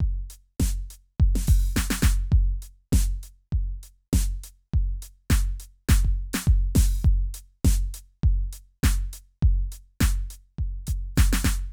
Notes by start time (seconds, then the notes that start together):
0.01 kick
0.31 closed hi-hat
0.60 kick, snare
0.91 closed hi-hat
1.20 kick
1.36 snare
1.48 open hi-hat, kick
1.73 hi-hat pedal
1.77 kick, snare
1.91 snare
2.03 kick, snare
2.32 kick
2.63 closed hi-hat
2.93 kick, snare
3.24 closed hi-hat
3.53 kick
3.84 closed hi-hat
4.13 kick, snare
4.44 closed hi-hat
4.74 kick
5.03 closed hi-hat
5.31 kick, snare
5.60 closed hi-hat
5.89 open hi-hat, kick, snare, hi-hat pedal
6.05 kick
6.34 closed hi-hat, snare
6.48 kick
6.76 open hi-hat, kick, snare
7.03 kick, hi-hat pedal
7.35 closed hi-hat
7.65 kick, snare
7.95 closed hi-hat
8.24 kick
8.53 closed hi-hat
8.84 kick, snare
9.14 closed hi-hat
9.43 kick
9.73 closed hi-hat
10.01 kick, snare
10.31 closed hi-hat
10.59 kick
10.87 open hi-hat, kick
11.16 kick, snare, hi-hat pedal
11.33 snare
11.45 kick, snare